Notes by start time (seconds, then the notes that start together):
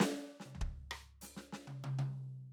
0.00 snare
0.40 snare
0.46 high tom
0.55 floor tom
0.61 kick
0.91 cross-stick
1.21 snare, hi-hat pedal
1.37 snare
1.53 snare
1.67 high tom
1.84 high tom
1.99 closed hi-hat, high tom